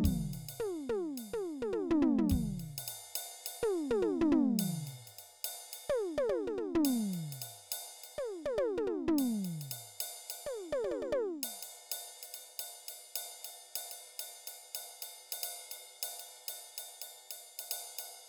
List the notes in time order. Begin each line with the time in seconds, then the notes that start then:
0.04 kick, ride
0.33 ride
0.48 ride
0.59 mid tom
0.89 mid tom
1.17 ride
1.33 mid tom
1.61 mid tom
1.72 mid tom
1.90 floor tom
2.01 floor tom
2.18 floor tom
2.29 kick, ride
2.59 ride
2.78 ride
2.88 ride
3.15 ride
3.46 ride
3.62 mid tom
3.90 mid tom
4.02 mid tom
4.20 floor tom
4.31 floor tom
4.59 ride
4.87 ride
5.07 ride
5.18 ride
5.44 ride
5.73 ride
5.89 high tom
6.17 high tom
6.29 high tom
6.47 mid tom
6.57 mid tom
6.74 floor tom
6.85 ride
7.13 ride
7.32 ride
7.42 ride
7.72 ride
8.03 ride
8.18 high tom
8.45 high tom
8.57 high tom
8.77 mid tom
8.86 mid tom
9.07 floor tom
9.18 ride
9.44 ride
9.61 ride
9.71 ride
10.00 ride
10.30 ride
10.46 high tom
10.72 high tom
10.84 high tom
10.91 high tom
11.02 high tom
11.12 high tom
11.43 ride
11.62 ride
11.91 ride
12.23 ride
12.34 ride
12.59 ride
12.88 ride
13.15 ride
13.44 ride
13.75 ride
13.91 ride
14.19 ride
14.47 ride
14.75 ride
15.02 ride
15.32 ride
15.43 ride
15.71 ride
16.03 ride
16.19 ride
16.48 ride
16.78 ride
17.01 ride
17.30 ride
17.59 ride
17.71 ride
17.98 ride